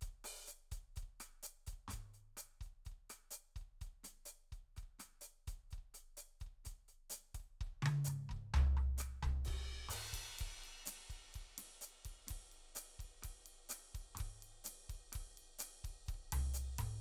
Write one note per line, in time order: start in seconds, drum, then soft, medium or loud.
0.01 closed hi-hat soft
0.01 kick soft
0.07 kick soft
0.24 open hi-hat medium
0.24 cross-stick soft
0.24 snare soft
0.47 hi-hat pedal medium
0.71 closed hi-hat soft
0.71 kick soft
0.77 kick soft
0.96 closed hi-hat soft
0.96 kick soft
1.02 kick soft
1.20 closed hi-hat medium
1.20 cross-stick soft
1.43 hi-hat pedal medium
1.67 closed hi-hat soft
1.67 kick soft
1.73 kick soft
1.88 closed hi-hat medium
1.88 cross-stick soft
1.88 snare soft
1.88 hi-hat pedal soft
1.88 mid tom soft
1.93 kick soft
1.98 kick soft
2.14 closed hi-hat soft
2.37 cross-stick soft
2.37 hi-hat pedal medium
2.61 closed hi-hat soft
2.61 kick soft
2.66 kick soft
2.85 closed hi-hat soft
2.85 kick soft
2.91 kick soft
3.10 closed hi-hat soft
3.10 cross-stick soft
3.31 closed hi-hat soft
3.31 hi-hat pedal medium
3.56 closed hi-hat soft
3.56 kick soft
3.61 kick soft
3.81 closed hi-hat soft
3.81 kick soft
3.86 kick soft
4.03 closed hi-hat soft
4.03 snare soft
4.25 closed hi-hat soft
4.25 hi-hat pedal medium
4.52 closed hi-hat soft
4.52 kick soft
4.76 closed hi-hat soft
4.76 kick soft
4.76 cross-stick soft
4.83 kick soft
4.99 closed hi-hat soft
4.99 cross-stick soft
4.99 snare soft
5.21 closed hi-hat soft
5.21 hi-hat pedal medium
5.47 closed hi-hat soft
5.47 kick soft
5.47 snare soft
5.53 kick soft
5.71 closed hi-hat soft
5.71 kick soft
5.78 kick soft
5.94 closed hi-hat soft
5.94 cross-stick soft
6.17 hi-hat pedal medium
6.40 closed hi-hat soft
6.40 kick soft
6.46 kick soft
6.64 closed hi-hat soft
6.64 kick soft
6.64 snare soft
6.71 kick soft
6.88 closed hi-hat soft
7.10 closed hi-hat medium
7.10 snare soft
7.10 hi-hat pedal medium
7.34 kick soft
7.34 closed hi-hat soft
7.39 kick soft
7.61 kick soft
7.66 kick soft
7.82 high tom medium
7.86 high tom loud
8.04 hi-hat pedal medium
8.04 mid tom soft
8.29 kick soft
8.29 mid tom soft
8.36 kick soft
8.54 kick soft
8.54 floor tom loud
8.62 kick soft
8.77 floor tom medium
8.97 cross-stick medium
8.97 snare soft
8.97 hi-hat pedal medium
9.23 kick soft
9.23 floor tom medium
9.29 kick soft
9.45 kick soft
9.45 hi-hat pedal soft
9.45 ride medium
9.53 kick soft
9.89 cross-stick soft
9.89 hi-hat pedal medium
9.89 mid tom soft
9.89 crash medium
9.93 cross-stick soft
10.13 kick soft
10.13 ride medium
10.18 kick soft
10.39 kick soft
10.39 hi-hat pedal soft
10.39 ride medium
10.46 kick soft
10.64 ride soft
10.86 snare soft
10.86 hi-hat pedal medium
10.86 ride medium
11.10 kick soft
11.10 ride soft
11.32 kick soft
11.32 hi-hat pedal soft
11.32 ride soft
11.40 kick soft
11.58 snare soft
11.58 ride medium
11.81 hi-hat pedal medium
11.81 ride soft
12.05 kick soft
12.05 ride soft
12.10 kick soft
12.27 kick soft
12.27 snare soft
12.27 ride medium
12.35 kick soft
12.52 ride soft
12.75 cross-stick soft
12.75 hi-hat pedal medium
12.75 ride medium
12.99 kick soft
12.99 ride soft
13.04 kick soft
13.22 kick soft
13.22 cross-stick soft
13.22 ride medium
13.29 kick soft
13.46 ride soft
13.69 cross-stick soft
13.69 snare soft
13.69 hi-hat pedal medium
13.69 ride medium
13.94 kick soft
13.94 ride soft
14.00 kick soft
14.15 cross-stick soft
14.15 snare soft
14.15 hi-hat pedal soft
14.15 mid tom soft
14.15 ride medium
14.20 kick soft
14.26 kick soft
14.42 ride soft
14.64 snare soft
14.64 hi-hat pedal medium
14.64 crash soft
14.64 ride medium
14.89 kick soft
14.89 ride soft
14.94 kick soft
15.12 kick soft
15.12 cross-stick soft
15.12 ride medium
15.20 kick soft
15.37 ride soft
15.59 cross-stick soft
15.59 hi-hat pedal medium
15.59 ride medium
15.84 kick soft
15.84 ride soft
15.89 kick soft
16.06 kick soft
16.06 hi-hat pedal soft
16.06 ride soft
16.14 kick soft
16.32 floor tom medium
16.32 ride medium
16.54 hi-hat pedal medium
16.78 kick soft
16.78 mid tom medium
16.78 ride medium
16.86 kick soft